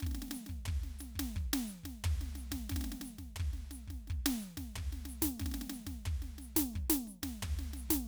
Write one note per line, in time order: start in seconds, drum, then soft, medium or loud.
0.00 kick soft
0.00 snare soft
0.06 snare soft
0.11 snare soft
0.15 snare soft
0.22 snare soft
0.28 snare soft
0.31 snare medium
0.31 hi-hat pedal medium
0.46 kick soft
0.46 snare soft
0.65 kick soft
0.65 floor tom medium
0.83 snare soft
0.99 snare soft
0.99 hi-hat pedal medium
1.15 kick soft
1.15 snare medium
1.36 kick soft
1.53 snare medium
1.67 snare soft
1.67 hi-hat pedal medium
1.83 kick soft
1.83 snare soft
2.04 kick soft
2.04 floor tom medium
2.21 snare soft
2.35 snare soft
2.35 hi-hat pedal soft
2.51 kick soft
2.51 snare medium
2.69 kick soft
2.69 snare soft
2.76 snare soft
2.81 snare soft
2.84 snare soft
2.92 snare soft
3.01 snare soft
3.01 hi-hat pedal soft
3.18 kick soft
3.18 snare soft
3.36 kick soft
3.36 floor tom medium
3.53 snare soft
3.71 snare soft
3.71 hi-hat pedal medium
3.87 kick soft
3.87 snare soft
4.07 kick soft
4.07 snare soft
4.26 snare medium
4.39 snare soft
4.39 hi-hat pedal soft
4.57 kick soft
4.57 snare soft
4.62 kick soft
4.76 kick soft
4.76 floor tom medium
4.92 snare soft
5.05 snare soft
5.05 hi-hat pedal medium
5.21 kick soft
5.21 snare medium
5.39 kick soft
5.39 snare soft
5.46 snare soft
5.51 snare soft
5.54 snare soft
5.61 snare soft
5.70 snare medium
5.70 hi-hat pedal soft
5.86 kick soft
5.86 snare soft
6.05 kick soft
6.05 floor tom medium
6.22 snare soft
6.38 snare soft
6.38 hi-hat pedal soft
6.55 kick soft
6.55 snare medium
6.73 kick soft
6.73 snare soft
6.90 snare medium
7.07 snare soft
7.07 hi-hat pedal soft
7.22 kick soft
7.22 snare medium
7.42 kick soft
7.42 floor tom medium
7.59 snare soft
7.73 snare soft
7.73 hi-hat pedal medium
7.89 kick soft
7.89 snare medium